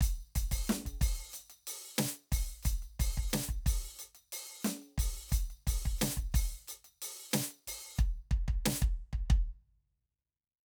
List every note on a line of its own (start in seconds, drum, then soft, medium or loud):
0.01 closed hi-hat loud
0.01 kick medium
0.36 closed hi-hat loud
0.36 kick medium
0.52 kick medium
0.52 percussion loud
0.68 snare loud
0.68 hi-hat pedal medium
0.86 kick soft
0.86 closed hi-hat medium
1.01 kick medium
1.01 percussion loud
1.32 closed hi-hat loud
1.32 hi-hat pedal medium
1.50 closed hi-hat medium
1.67 percussion loud
1.96 closed hi-hat loud
1.96 snare loud
1.96 hi-hat pedal soft
2.15 closed hi-hat soft
2.32 kick medium
2.32 hi-hat pedal soft
2.32 percussion loud
2.63 closed hi-hat loud
2.63 kick medium
2.63 hi-hat pedal medium
2.82 closed hi-hat soft
3.00 kick medium
3.00 percussion loud
3.18 kick medium
3.30 closed hi-hat loud
3.30 snare loud
3.30 hi-hat pedal medium
3.49 kick soft
3.49 closed hi-hat soft
3.66 kick medium
3.66 percussion loud
3.99 hi-hat pedal soft
3.99 percussion medium
4.15 closed hi-hat medium
4.33 percussion loud
4.63 closed hi-hat loud
4.63 snare loud
4.63 hi-hat pedal medium
4.82 closed hi-hat soft
4.98 kick medium
4.98 percussion loud
5.30 closed hi-hat loud
5.30 kick medium
5.30 hi-hat pedal medium
5.50 closed hi-hat soft
5.67 kick medium
5.67 percussion loud
5.86 kick medium
5.99 closed hi-hat loud
5.99 snare loud
5.99 hi-hat pedal medium
6.17 kick soft
6.17 closed hi-hat medium
6.32 kick medium
6.32 hi-hat pedal soft
6.32 percussion loud
6.68 hi-hat pedal medium
6.68 percussion loud
6.85 closed hi-hat medium
7.02 percussion loud
7.32 closed hi-hat loud
7.32 snare loud
7.32 hi-hat pedal medium
7.51 closed hi-hat soft
7.67 kick soft
7.67 percussion loud
7.97 kick medium
7.97 hi-hat pedal medium
8.31 kick medium
8.36 kick soft
8.36 crash soft
8.48 kick medium
8.66 snare loud
8.82 kick medium
9.13 kick medium
9.26 kick soft
9.30 kick loud